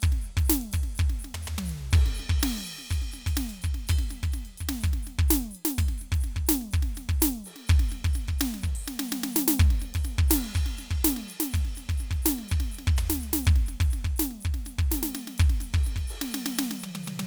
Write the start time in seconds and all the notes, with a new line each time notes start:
0.01 kick, hi-hat pedal, ride
0.13 snare
0.22 hi-hat pedal
0.38 kick, ride
0.46 hi-hat pedal
0.50 snare
0.62 ride
0.72 kick, hi-hat pedal, ride
0.84 snare
0.96 hi-hat pedal, ride
1.00 kick
1.10 snare
1.20 hi-hat pedal
1.25 snare
1.35 floor tom
1.43 hi-hat pedal
1.48 floor tom
1.59 high tom
1.66 hi-hat pedal, ride
1.91 kick, hi-hat pedal, ride
2.06 snare
2.15 hi-hat pedal
2.20 snare
2.30 kick
2.40 snare, hi-hat pedal, crash
2.58 snare
2.64 hi-hat pedal, ride
2.79 snare
2.90 kick, hi-hat pedal, ride
3.02 snare
3.12 snare, hi-hat pedal
3.27 kick, ride bell
3.36 snare, hi-hat pedal
3.50 ride bell
3.62 kick, hi-hat pedal, ride bell
3.75 snare
3.88 kick, hi-hat pedal, ride bell
3.99 snare
4.10 snare, hi-hat pedal
4.24 kick, ride bell
4.33 snare, hi-hat pedal
4.46 ride bell
4.58 kick, hi-hat pedal, ride bell
4.70 snare
4.81 kick, hi-hat pedal, ride bell
4.94 snare
5.03 hi-hat pedal
5.08 snare, ride bell
5.19 kick, ride bell
5.29 snare, hi-hat pedal
5.43 ride bell
5.51 hi-hat pedal
5.55 ride bell
5.66 snare
5.76 kick, hi-hat pedal, ride bell
5.89 snare
5.99 snare, hi-hat pedal, ride
6.13 kick, ride
6.21 snare, hi-hat pedal
6.37 kick, ride
6.47 snare, hi-hat pedal, ride
6.62 snare
6.71 kick, hi-hat pedal, ride
6.83 snare
6.96 snare, hi-hat pedal, ride
7.10 kick, ride
7.21 snare, hi-hat pedal
7.34 ride
7.45 hi-hat pedal, ride
7.57 snare
7.67 kick, hi-hat pedal, ride
7.80 snare
7.89 snare, hi-hat pedal, ride
8.05 kick, ride
8.14 snare, hi-hat pedal
8.29 kick, ride
8.39 snare, hi-hat pedal, ride
8.55 snare
8.62 kick, hi-hat pedal, ride
8.76 open hi-hat
8.85 snare, hi-hat pedal
9.00 snare
9.09 snare, hi-hat pedal
9.24 snare
9.33 snare, hi-hat pedal
9.48 snare
9.58 kick, hi-hat pedal, ride
9.71 snare
9.80 snare, hi-hat pedal
9.95 kick, ride
10.04 snare, hi-hat pedal
10.19 kick
10.29 snare, hi-hat pedal, crash
10.45 snare
10.54 kick, hi-hat pedal
10.67 snare
10.78 snare, hi-hat pedal, ride
10.91 kick, ride
11.05 snare, hi-hat pedal, ride
11.17 snare
11.29 hi-hat pedal, ride
11.41 snare
11.52 kick, hi-hat pedal
11.56 ride
11.65 snare
11.76 snare, hi-hat pedal, ride
11.90 kick, ride
11.98 snare, hi-hat pedal
12.12 kick, ride
12.23 snare, hi-hat pedal, ride
12.39 snare
12.49 kick, hi-hat pedal, ride
12.61 snare
12.72 hi-hat pedal, ride
12.79 snare
12.88 kick
12.97 floor tom, hi-hat pedal
13.11 snare
13.21 hi-hat pedal, ride
13.34 snare
13.44 kick, hi-hat pedal, ride
13.56 snare
13.67 snare, hi-hat pedal, ride
13.81 kick, ride
13.91 snare, hi-hat pedal
14.05 kick, ride
14.17 snare, hi-hat pedal, ride
14.31 snare
14.41 hi-hat pedal, ride
14.46 kick
14.55 snare
14.66 snare, hi-hat pedal, ride
14.79 kick, ride
14.92 snare, hi-hat pedal, ride
15.04 snare
15.15 snare, hi-hat pedal
15.28 snare
15.38 kick, hi-hat pedal, ride
15.50 snare
15.61 snare, hi-hat pedal, ride
15.74 kick, ride
15.84 snare, hi-hat pedal
15.97 kick, ride
16.08 hi-hat pedal, ride
16.22 snare
16.32 snare, hi-hat pedal
16.47 snare
16.56 snare, hi-hat pedal
16.72 snare
16.80 hi-hat pedal
16.84 high tom
16.96 high tom
17.04 hi-hat pedal
17.08 high tom
17.20 high tom